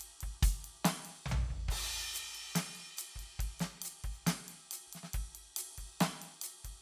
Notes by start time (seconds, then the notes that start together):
0.01 ride
0.21 kick, ride
0.43 open hi-hat, kick, ride
0.64 ride
0.85 snare, ride
1.05 ride
1.26 floor tom, hi-hat pedal
1.32 floor tom
1.50 kick
1.68 kick, crash, ride
2.14 hi-hat pedal, ride
2.35 ride
2.49 hi-hat pedal
2.55 snare, ride
2.75 ride
2.97 hi-hat pedal, ride
3.16 kick, ride
3.39 kick, ride
3.60 snare, ride
3.82 hi-hat pedal, ride
4.04 kick, ride
4.13 hi-hat pedal
4.27 snare, ride
4.48 ride
4.71 hi-hat pedal, ride
4.87 kick
4.93 snare, ride
5.03 snare
5.14 kick, ride
5.35 ride
5.56 hi-hat pedal, ride
5.78 kick, ride
6.01 snare, ride
6.22 ride
6.42 hi-hat pedal, ride
6.64 kick, ride